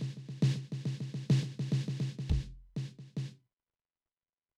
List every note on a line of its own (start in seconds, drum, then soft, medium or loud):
0.01 snare medium
0.17 snare soft
0.29 snare soft
0.42 snare loud
0.56 snare soft
0.72 snare medium
0.85 snare medium
1.00 snare medium
1.14 snare medium
1.30 snare loud
1.43 snare medium
1.59 snare medium
1.72 snare medium
1.88 snare medium
2.00 snare medium
2.19 snare medium
2.30 kick medium
2.30 snare medium
2.76 snare medium
2.99 snare soft
3.17 snare medium